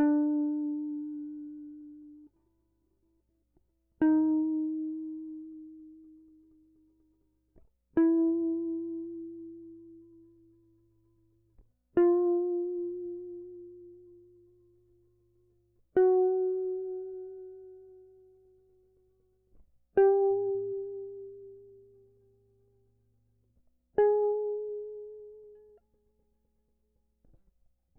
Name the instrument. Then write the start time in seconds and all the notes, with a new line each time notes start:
electric guitar
0.00 D4
4.02 D#4
7.98 E4
11.97 F4
15.96 F#4
19.98 G4
23.98 G#4